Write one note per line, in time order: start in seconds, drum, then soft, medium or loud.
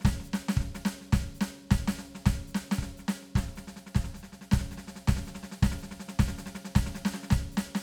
0.01 snare soft
0.05 kick loud
0.05 snare loud
0.20 snare soft
0.24 hi-hat pedal medium
0.34 snare loud
0.49 snare loud
0.57 kick loud
0.57 snare medium
0.75 snare medium
0.75 hi-hat pedal medium
0.85 snare loud
1.02 snare soft
1.13 kick loud
1.13 snare loud
1.30 snare soft
1.35 hi-hat pedal medium
1.41 snare loud
1.71 kick loud
1.71 snare loud
1.88 snare loud
1.88 hi-hat pedal medium
1.98 snare medium
2.15 snare medium
2.26 kick loud
2.26 snare loud
2.48 hi-hat pedal medium
2.55 snare loud
2.72 snare loud
2.79 kick medium
2.79 snare medium
2.97 snare soft
2.97 hi-hat pedal medium
3.08 snare loud
3.22 snare soft
3.36 kick loud
3.36 snare loud
3.48 snare soft
3.56 snare medium
3.56 hi-hat pedal medium
3.68 snare medium
3.76 snare medium
3.87 snare medium
3.95 kick loud
3.95 snare medium
4.04 snare medium
4.14 snare soft
4.14 hi-hat pedal medium
4.23 snare medium
4.33 snare soft
4.41 snare soft
4.52 kick loud
4.52 snare loud
4.59 snare medium
4.71 snare medium
4.71 hi-hat pedal medium
4.78 snare medium
4.96 snare medium
5.08 kick loud
5.08 snare loud
5.17 snare medium
5.25 snare medium
5.25 hi-hat pedal medium
5.35 snare medium
5.43 snare medium
5.52 snare medium
5.63 kick loud
5.63 snare loud
5.72 snare medium
5.79 hi-hat pedal medium
5.83 snare medium
5.91 snare medium
6.00 snare medium
6.09 snare medium
6.19 kick loud
6.19 snare loud
6.28 snare medium
6.38 hi-hat pedal medium
6.46 snare medium
6.55 snare medium
6.65 snare medium
6.76 kick loud
6.76 snare loud
6.86 snare medium
6.95 snare medium
6.95 hi-hat pedal medium
7.05 snare loud
7.14 snare medium
7.23 snare medium
7.31 kick loud
7.31 snare loud
7.52 hi-hat pedal medium
7.57 snare loud
7.75 snare loud